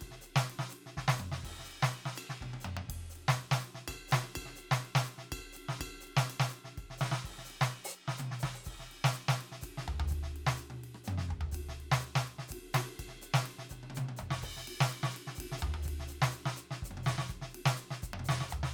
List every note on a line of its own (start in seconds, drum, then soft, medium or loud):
0.01 kick soft
0.01 ride bell medium
0.07 kick soft
0.07 snare soft
0.21 hi-hat pedal medium
0.26 ride soft
0.36 snare loud
0.50 ride medium
0.59 snare medium
0.69 hi-hat pedal loud
0.69 ride medium
0.86 snare soft
0.97 kick soft
0.97 snare medium
1.05 kick soft
1.05 snare loud
1.17 hi-hat pedal loud
1.17 mid tom medium
1.32 snare medium
1.44 kick soft
1.44 crash medium
1.50 kick soft
1.53 kick soft
1.59 snare soft
1.65 hi-hat pedal medium
1.71 ride bell soft
1.82 snare loud
1.82 hi-hat pedal soft
1.94 ride soft
2.06 snare medium
2.15 hi-hat pedal medium
2.15 ride bell loud
2.29 snare medium
2.41 kick soft
2.41 high tom medium
2.47 kick soft
2.53 high tom medium
2.60 hi-hat pedal medium
2.65 mid tom loud
2.77 mid tom medium
2.89 kick medium
2.89 crash loud
2.95 kick soft
2.99 kick soft
3.10 hi-hat pedal medium
3.16 ride medium
3.28 snare loud
3.28 hi-hat pedal soft
3.41 ride soft
3.51 snare loud
3.59 hi-hat pedal medium
3.65 ride medium
3.75 snare medium
3.88 kick soft
3.88 snare soft
3.88 ride bell loud
3.94 kick soft
4.08 hi-hat pedal loud
4.08 ride medium
4.12 snare loud
4.21 snare soft
4.35 kick soft
4.35 ride bell loud
4.42 kick soft
4.42 snare soft
4.56 hi-hat pedal loud
4.60 ride soft
4.71 snare loud
4.78 hi-hat pedal soft
4.85 ride soft
4.95 snare loud
5.04 hi-hat pedal medium
5.08 ride medium
5.18 snare medium
5.32 kick soft
5.32 ride bell loud
5.38 kick soft
5.42 kick soft
5.53 hi-hat pedal loud
5.57 ride medium
5.69 snare medium
5.80 kick soft
5.80 ride bell loud
5.86 kick soft
5.90 kick soft
6.01 hi-hat pedal loud
6.07 ride soft
6.17 snare loud
6.30 ride bell medium
6.40 snare loud
6.49 hi-hat pedal loud
6.54 ride medium
6.65 snare soft
6.78 kick soft
6.78 ride bell soft
6.83 kick soft
6.87 kick soft
6.87 snare medium
6.98 snare loud
6.98 hi-hat pedal loud
7.12 snare loud
7.24 kick soft
7.24 crash medium
7.30 kick soft
7.38 snare soft
7.45 hi-hat pedal loud
7.50 ride bell medium
7.61 snare loud
7.73 ride bell soft
7.84 open hi-hat loud
7.92 hi-hat pedal medium
8.08 snare medium
8.17 hi-hat pedal loud
8.17 high tom loud
8.31 snare medium
8.39 snare loud
8.39 hi-hat pedal loud
8.43 kick soft
8.54 open hi-hat medium
8.64 kick soft
8.64 hi-hat pedal medium
8.64 crash medium
8.72 kick soft
8.76 kick soft
8.76 snare soft
8.91 ride medium
9.04 snare loud
9.12 hi-hat pedal loud
9.12 ride soft
9.28 snare loud
9.34 hi-hat pedal soft
9.41 ride medium
9.52 snare medium
9.61 kick soft
9.61 hi-hat pedal loud
9.61 ride medium
9.68 kick soft
9.78 snare medium
9.78 hi-hat pedal soft
9.86 kick soft
9.86 floor tom loud
10.00 floor tom loud
10.08 kick medium
10.08 hi-hat pedal loud
10.12 ride medium
10.18 kick soft
10.21 kick soft
10.21 snare soft
10.28 hi-hat pedal soft
10.36 ride medium
10.47 snare loud
10.56 hi-hat pedal medium
10.56 ride medium
10.70 high tom medium
10.76 hi-hat pedal soft
10.84 ride medium
10.95 cross-stick soft
11.04 hi-hat pedal loud
11.04 mid tom loud
11.18 snare medium
11.23 hi-hat pedal soft
11.29 kick soft
11.29 floor tom medium
11.41 floor tom medium
11.52 kick soft
11.52 hi-hat pedal loud
11.52 ride medium
11.59 kick soft
11.62 kick soft
11.69 snare medium
11.80 ride soft
11.92 snare loud
12.00 hi-hat pedal loud
12.04 ride soft
12.15 snare loud
12.28 ride soft
12.38 snare medium
12.48 kick soft
12.48 hi-hat pedal loud
12.48 ride loud
12.56 kick soft
12.73 snare loud
12.73 hi-hat pedal medium
12.73 ride loud
12.99 kick soft
12.99 ride bell medium
13.05 kick soft
13.05 snare soft
13.22 hi-hat pedal loud
13.22 ride medium
13.34 snare loud
13.42 hi-hat pedal soft
13.42 ride medium
13.59 snare medium
13.69 kick soft
13.69 hi-hat pedal medium
13.69 high tom medium
13.83 high tom medium
13.90 high tom loud
13.95 hi-hat pedal loud
13.95 high tom loud
14.09 high tom medium
14.17 hi-hat pedal loud
14.17 mid tom medium
14.21 kick soft
14.27 kick soft
14.31 snare loud
14.42 kick soft
14.42 hi-hat pedal medium
14.42 crash loud
14.53 kick soft
14.57 snare medium
14.68 ride medium
14.80 snare loud
14.88 hi-hat pedal loud
14.93 ride medium
15.03 snare loud
15.10 kick soft
15.10 hi-hat pedal medium
15.16 ride medium
15.27 snare medium
15.35 kick soft
15.35 hi-hat pedal loud
15.40 kick soft
15.40 ride loud
15.48 kick soft
15.52 snare medium
15.58 hi-hat pedal loud
15.62 floor tom loud
15.74 floor tom medium
15.83 kick soft
15.83 hi-hat pedal loud
15.88 kick soft
15.88 ride medium
15.95 kick soft
16.00 snare medium
16.08 hi-hat pedal loud
16.12 ride medium
16.22 snare loud
16.31 hi-hat pedal loud
16.35 ride medium
16.46 snare loud
16.56 hi-hat pedal loud
16.56 ride bell soft
16.71 snare medium
16.82 kick medium
16.82 hi-hat pedal loud
16.89 kick soft
16.89 mid tom medium
16.89 ride soft
16.93 kick soft
16.93 high tom medium
17.03 kick soft
17.03 snare loud
17.03 hi-hat pedal medium
17.18 snare medium
17.28 kick soft
17.28 hi-hat pedal medium
17.28 ride bell soft
17.36 kick soft
17.39 kick soft
17.39 snare medium
17.50 hi-hat pedal soft
17.55 ride medium
17.66 snare loud
17.76 hi-hat pedal loud
17.76 ride bell soft
17.91 snare medium
18.02 kick medium
18.02 hi-hat pedal loud
18.11 kick soft
18.11 mid tom medium
18.14 kick soft
18.19 high tom medium
18.24 hi-hat pedal loud
18.29 snare loud
18.41 snare medium
18.49 hi-hat pedal loud
18.49 floor tom medium
18.63 snare medium